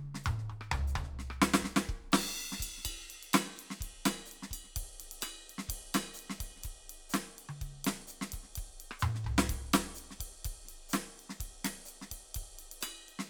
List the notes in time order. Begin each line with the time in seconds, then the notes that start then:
0.15 snare
0.24 kick, hi-hat pedal, mid tom
0.33 kick
0.39 snare
0.50 mid tom
0.62 cross-stick
0.72 kick, floor tom
0.88 hi-hat pedal
0.96 kick, floor tom
1.03 kick, snare
1.19 snare
1.31 cross-stick
1.42 snare
1.54 snare
1.62 kick, snare
1.77 snare
1.87 kick, hi-hat pedal
1.96 kick
2.13 snare, crash
2.52 snare, hi-hat pedal
2.60 kick, ride bell
2.68 kick
2.78 snare
2.83 kick, snare, ride bell
3.11 ride
3.16 cross-stick
3.23 ride
3.34 snare, hi-hat pedal, ride bell
3.56 hi-hat pedal, ride
3.71 snare
3.81 kick, hi-hat pedal, ride
4.06 snare, ride bell
4.26 hi-hat pedal
4.32 ride
4.43 snare
4.51 kick, ride bell
4.64 snare
4.76 kick, hi-hat pedal, ride
4.83 kick
5.00 cross-stick, ride
5.12 ride
5.21 cross-stick, hi-hat pedal, ride bell
5.50 ride
5.59 snare
5.69 kick, hi-hat pedal, ride
5.75 kick
5.95 snare, ride bell
6.14 hi-hat pedal
6.20 ride
6.30 snare
6.41 kick, ride
6.48 kick
6.57 snare
6.60 snare, hi-hat pedal, ride
6.65 kick
6.90 ride
7.10 hi-hat pedal
7.14 snare, ride
7.39 ride
7.49 closed hi-hat, high tom
7.62 kick, ride
7.68 kick
7.85 snare, ride
8.08 hi-hat pedal, ride
8.22 snare
8.33 kick, ride
8.44 snare
8.51 snare, hi-hat pedal
8.56 kick, ride
8.64 kick, snare
8.81 ride
8.91 cross-stick
9.00 hi-hat pedal, mid tom
9.15 snare
9.25 kick, floor tom
9.38 snare
9.49 kick, hi-hat pedal, ride
9.56 kick
9.74 snare, ride
9.95 hi-hat pedal, ride
10.11 snare
10.20 kick, ride
10.32 snare
10.45 kick, ride
10.53 kick
10.65 snare, ride
10.90 hi-hat pedal
10.94 snare, ride
11.20 ride
11.30 snare
11.40 kick, ride
11.49 kick
11.65 snare, ride
11.86 hi-hat pedal, ride
12.02 snare
12.12 kick, ride
12.35 kick, ride
12.43 kick
12.55 kick
12.59 ride
12.72 ride
12.81 cross-stick, hi-hat pedal, ride bell
13.09 ride
13.19 snare